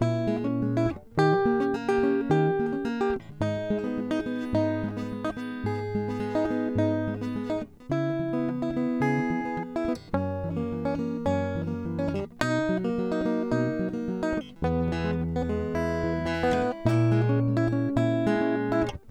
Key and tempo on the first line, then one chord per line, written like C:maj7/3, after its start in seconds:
G# minor, 107 BPM
0.00 A#:hdim7
1.16 D#:7
3.41 G#:min
7.89 C#:min7
10.14 F#:7
12.38 B:maj7
14.62 E:maj
16.86 A#:hdim7